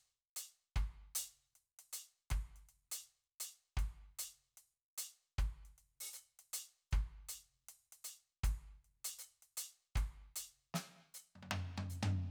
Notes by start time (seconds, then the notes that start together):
0.37 open hi-hat
0.76 kick, cross-stick, closed hi-hat
1.16 closed hi-hat
1.56 closed hi-hat
1.79 closed hi-hat
1.93 closed hi-hat
2.31 kick, cross-stick, closed hi-hat
2.57 closed hi-hat
2.69 closed hi-hat
2.92 closed hi-hat
3.25 closed hi-hat
3.41 open hi-hat
3.77 kick, cross-stick, closed hi-hat
4.19 closed hi-hat
4.58 closed hi-hat
4.98 closed hi-hat
5.39 kick, cross-stick, closed hi-hat
5.66 closed hi-hat
5.79 closed hi-hat
6.01 open hi-hat
6.14 hi-hat pedal
6.40 closed hi-hat
6.54 open hi-hat
6.92 kick, cross-stick, closed hi-hat, hi-hat pedal
7.29 closed hi-hat
7.69 closed hi-hat
7.93 closed hi-hat
8.05 closed hi-hat
8.44 kick, cross-stick, closed hi-hat
8.85 closed hi-hat
9.05 open hi-hat
9.19 hi-hat pedal
9.43 closed hi-hat
9.58 open hi-hat
9.96 kick, cross-stick, closed hi-hat, hi-hat pedal
10.36 closed hi-hat
10.75 snare, closed hi-hat
11.15 hi-hat pedal
11.36 high tom
11.43 high tom
11.52 high tom
11.78 high tom
11.90 hi-hat pedal
12.03 high tom